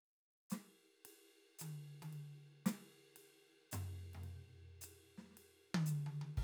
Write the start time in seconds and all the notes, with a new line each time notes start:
0.51 snare, hi-hat pedal, ride
1.06 ride
1.59 hi-hat pedal, high tom, ride
2.03 high tom, ride
2.13 ride
2.66 snare, hi-hat pedal, ride
3.17 ride
3.72 floor tom, hi-hat pedal, ride
4.14 floor tom, ride
4.82 hi-hat pedal, ride
5.18 snare
5.24 snare
5.27 snare
5.31 snare
5.38 ride
5.75 high tom
5.86 hi-hat pedal, ride
6.07 high tom
6.22 high tom
6.38 kick, crash